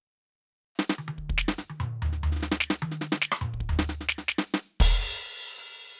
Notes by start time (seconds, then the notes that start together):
0.75 snare, hi-hat pedal
0.89 snare
0.98 high tom
1.08 high tom
1.18 kick
1.29 kick
1.38 snare
1.48 snare
1.70 high tom
1.80 mid tom
2.02 floor tom
2.12 snare
2.23 floor tom
2.32 snare
2.36 snare
2.40 snare
2.43 snare
2.52 snare
2.60 snare
2.70 snare
2.82 high tom
2.91 snare
3.01 snare
3.12 snare
3.22 snare
3.32 cross-stick
3.41 mid tom
3.54 kick
3.60 kick
3.69 floor tom
3.79 snare
3.89 snare
4.01 snare
4.09 snare
4.18 snare
4.28 snare
4.38 snare, hi-hat pedal
4.54 snare
4.80 kick, crash
5.58 hi-hat pedal